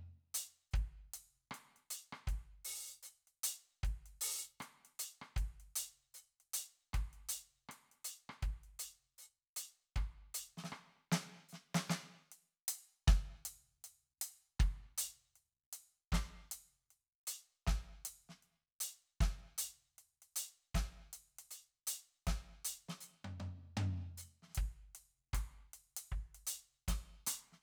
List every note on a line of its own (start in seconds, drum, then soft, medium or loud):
0.35 open hi-hat loud
0.71 kick medium
0.71 hi-hat pedal soft
0.76 closed hi-hat soft
1.14 closed hi-hat medium
1.51 cross-stick medium
1.51 closed hi-hat soft
1.76 closed hi-hat soft
1.91 closed hi-hat medium
2.13 cross-stick medium
2.28 kick medium
2.28 closed hi-hat soft
2.65 open hi-hat medium
3.03 closed hi-hat soft
3.03 hi-hat pedal medium
3.28 closed hi-hat soft
3.44 closed hi-hat loud
3.83 kick medium
3.83 closed hi-hat soft
4.06 closed hi-hat soft
4.21 open hi-hat loud
4.60 cross-stick medium
4.60 closed hi-hat soft
4.60 hi-hat pedal soft
4.85 closed hi-hat soft
5.00 closed hi-hat medium
5.22 cross-stick medium
5.37 kick medium
5.37 closed hi-hat soft
5.60 closed hi-hat soft
5.76 open hi-hat loud
6.14 closed hi-hat soft
6.14 hi-hat pedal medium
6.40 closed hi-hat soft
6.54 closed hi-hat loud
6.94 kick medium
6.94 cross-stick medium
6.94 closed hi-hat soft
7.13 closed hi-hat soft
7.29 closed hi-hat medium
7.69 cross-stick medium
7.69 closed hi-hat soft
7.92 closed hi-hat soft
8.05 closed hi-hat medium
8.29 cross-stick medium
8.43 kick medium
8.43 closed hi-hat soft
8.64 closed hi-hat soft
8.79 open hi-hat medium
9.18 hi-hat pedal soft
9.57 closed hi-hat medium
9.96 kick medium
9.96 cross-stick medium
9.96 closed hi-hat soft
10.35 closed hi-hat medium
10.58 snare soft
10.64 snare soft
10.69 cross-stick medium
10.69 snare soft
11.12 snare loud
11.12 hi-hat pedal soft
11.49 hi-hat pedal soft
11.53 snare soft
11.75 snare loud
11.87 snare medium
11.87 hi-hat pedal soft
12.32 closed hi-hat soft
12.68 closed hi-hat loud
13.08 kick loud
13.08 snare medium
13.08 closed hi-hat soft
13.46 closed hi-hat medium
13.84 closed hi-hat medium
14.22 closed hi-hat medium
14.60 kick medium
14.60 cross-stick medium
14.60 closed hi-hat soft
14.98 closed hi-hat loud
15.36 closed hi-hat soft
15.73 closed hi-hat medium
16.12 kick medium
16.12 snare medium
16.12 closed hi-hat soft
16.52 closed hi-hat medium
16.91 closed hi-hat soft
17.27 closed hi-hat medium
17.67 kick medium
17.67 snare medium
17.67 closed hi-hat soft
18.05 closed hi-hat medium
18.29 snare soft
18.43 closed hi-hat soft
18.81 closed hi-hat medium
19.21 kick medium
19.21 snare medium
19.21 closed hi-hat soft
19.58 closed hi-hat loud
19.99 closed hi-hat soft
20.22 closed hi-hat soft
20.36 closed hi-hat loud
20.75 kick medium
20.75 snare medium
20.75 closed hi-hat soft
21.13 closed hi-hat medium
21.39 closed hi-hat soft
21.51 closed hi-hat medium
21.87 closed hi-hat loud
22.27 kick medium
22.27 snare medium
22.27 closed hi-hat soft
22.49 snare soft
22.65 closed hi-hat medium
22.89 snare medium
23.01 hi-hat pedal medium
23.25 high tom medium
23.40 high tom medium
23.77 high tom loud
24.18 hi-hat pedal medium
24.43 snare soft
24.47 snare soft
24.50 snare soft
24.53 snare soft
24.53 closed hi-hat medium
24.58 kick medium
24.95 closed hi-hat soft
25.33 kick medium
25.33 cross-stick medium
25.33 closed hi-hat medium
25.74 closed hi-hat soft
25.97 closed hi-hat medium
26.12 kick soft
26.35 closed hi-hat soft
26.47 closed hi-hat medium
26.88 kick medium
26.88 snare medium
26.88 closed hi-hat medium
27.27 closed hi-hat loud
27.27 cross-stick medium
27.53 snare soft